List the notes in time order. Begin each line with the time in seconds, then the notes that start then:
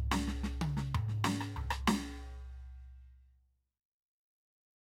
0.12 snare
0.28 snare
0.44 snare
0.62 high tom
0.77 snare
0.95 mid tom
1.09 snare
1.25 snare
1.41 cross-stick
1.57 floor tom
1.71 cross-stick
1.88 snare